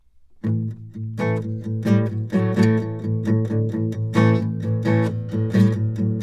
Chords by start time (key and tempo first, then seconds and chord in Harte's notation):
A major, 130 BPM
0.00 A:maj